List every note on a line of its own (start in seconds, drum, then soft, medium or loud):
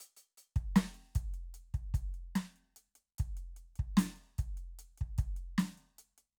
0.02 closed hi-hat medium
0.17 closed hi-hat soft
0.38 closed hi-hat soft
0.56 kick medium
0.56 closed hi-hat soft
0.76 snare loud
0.76 closed hi-hat medium
0.95 closed hi-hat soft
1.15 kick medium
1.15 closed hi-hat medium
1.34 closed hi-hat soft
1.54 closed hi-hat medium
1.74 kick soft
1.74 closed hi-hat soft
1.94 kick medium
1.94 closed hi-hat medium
2.14 closed hi-hat soft
2.35 snare loud
2.35 closed hi-hat medium
2.56 closed hi-hat soft
2.76 closed hi-hat medium
2.96 closed hi-hat soft
3.19 kick medium
3.19 closed hi-hat medium
3.37 closed hi-hat soft
3.57 closed hi-hat soft
3.76 kick soft
3.76 closed hi-hat soft
3.97 closed hi-hat medium
3.97 snare loud
4.16 closed hi-hat soft
4.39 kick medium
4.39 closed hi-hat medium
4.57 closed hi-hat soft
4.79 closed hi-hat medium
4.98 kick soft
4.98 closed hi-hat soft
5.18 kick medium
5.18 closed hi-hat medium
5.37 closed hi-hat soft
5.58 snare medium
5.58 closed hi-hat medium
5.78 closed hi-hat soft
5.99 closed hi-hat medium
6.18 closed hi-hat soft